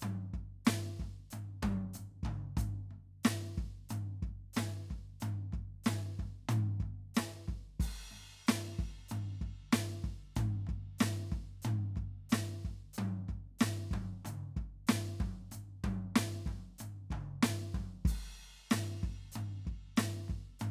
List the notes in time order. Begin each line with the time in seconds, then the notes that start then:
0.01 floor tom, hi-hat pedal, high tom
0.34 kick, floor tom
0.65 snare, floor tom, hi-hat pedal
1.00 kick, floor tom
1.31 floor tom, hi-hat pedal
1.63 kick, floor tom, high tom
1.94 floor tom, hi-hat pedal
2.24 kick, floor tom, mid tom
2.58 kick, floor tom, hi-hat pedal
2.91 floor tom
3.24 snare, floor tom, hi-hat pedal
3.58 kick, floor tom
3.90 floor tom, hi-hat pedal
4.23 kick, floor tom
4.54 snare, floor tom, hi-hat pedal
4.91 kick, floor tom
5.21 floor tom, hi-hat pedal
5.53 kick, floor tom
5.84 snare, floor tom, hi-hat pedal
6.20 kick, floor tom
6.49 floor tom, hi-hat pedal
6.81 kick, floor tom
7.15 snare, hi-hat pedal, floor tom
7.48 kick, floor tom
7.80 kick, hi-hat pedal, crash
8.12 floor tom
8.48 snare, hi-hat pedal, floor tom
8.79 kick, floor tom
9.09 floor tom, hi-hat pedal
9.42 kick, floor tom
9.73 snare, floor tom, hi-hat pedal
10.04 kick, floor tom
10.36 kick, floor tom, hi-hat pedal
10.67 kick, floor tom
10.99 snare, floor tom, hi-hat pedal
11.32 kick, floor tom
11.62 floor tom, hi-hat pedal
11.96 kick, floor tom
12.30 snare, floor tom, hi-hat pedal
12.65 kick, floor tom
12.94 hi-hat pedal
12.99 floor tom, high tom
13.29 kick, floor tom
13.59 snare, floor tom, hi-hat pedal
13.92 kick, floor tom, high tom
14.25 floor tom, hi-hat pedal, mid tom
14.57 kick, floor tom
14.87 snare, floor tom, hi-hat pedal
15.21 kick, floor tom, high tom
15.52 floor tom, hi-hat pedal
15.84 kick, floor tom, high tom
16.16 snare, floor tom, hi-hat pedal
16.47 kick, floor tom, high tom
16.79 floor tom, hi-hat pedal
17.11 kick, floor tom, mid tom
17.43 snare, floor tom, hi-hat pedal
17.75 kick, floor tom, high tom
18.06 kick, hi-hat pedal, crash
18.71 snare, floor tom, hi-hat pedal
19.03 kick, floor tom
19.32 floor tom, hi-hat pedal
19.66 kick, floor tom
19.97 snare, floor tom, hi-hat pedal
20.28 kick, floor tom
20.60 floor tom, hi-hat pedal